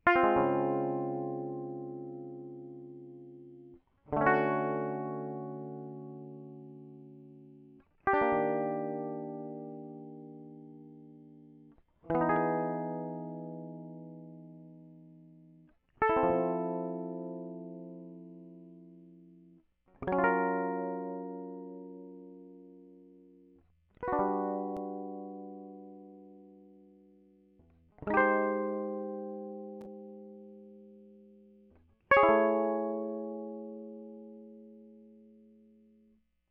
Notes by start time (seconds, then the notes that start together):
0.07 F4
0.17 C4
0.25 G#3
0.38 C#3
4.14 D3 A3
4.22 C#4
4.27 F#4
8.08 G4
8.14 D4
8.23 A#3
8.34 D#3
12.11 E3
12.16 B3
12.22 D#4
12.30 G#4
16.03 A4
16.10 E4
16.18 C4
16.25 F3
20.04 C3
20.09 F#3
20.13 C#4 G#4
20.19 F4
20.25 A#4
24.04 B4
24.09 F#4
24.13 D4
24.20 G3
28.08 G#3 D#4
28.14 G4 C5
32.12 C#5
32.18 G#4
32.24 E4
32.30 A3